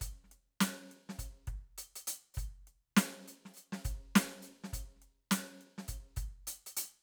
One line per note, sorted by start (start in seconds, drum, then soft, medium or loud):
0.01 closed hi-hat medium
0.01 kick soft
0.24 snare soft
0.31 closed hi-hat soft
0.61 closed hi-hat loud
0.61 snare loud
0.91 closed hi-hat soft
1.09 snare soft
1.19 closed hi-hat medium
1.19 kick soft
1.47 kick soft
1.47 closed hi-hat soft
1.78 closed hi-hat medium
1.96 closed hi-hat medium
2.07 closed hi-hat loud
2.34 kick soft
2.34 hi-hat pedal medium
2.38 closed hi-hat medium
2.67 closed hi-hat soft
2.97 closed hi-hat loud
2.97 snare loud
3.28 closed hi-hat soft
3.45 snare soft
3.54 closed hi-hat soft
3.54 hi-hat pedal soft
3.72 snare medium
3.85 closed hi-hat medium
3.85 kick soft
3.91 kick soft
3.94 kick soft
4.15 closed hi-hat loud
4.15 snare loud
4.42 closed hi-hat soft
4.42 hi-hat pedal medium
4.64 snare soft
4.73 closed hi-hat medium
4.73 kick soft
4.95 snare soft
5.02 closed hi-hat soft
5.31 closed hi-hat loud
5.31 snare medium
5.55 hi-hat pedal soft
5.61 closed hi-hat soft
5.78 snare soft
5.88 closed hi-hat medium
5.88 kick soft
6.16 closed hi-hat medium
6.16 kick soft
6.23 kick soft
6.47 closed hi-hat loud
6.66 closed hi-hat medium
6.77 closed hi-hat loud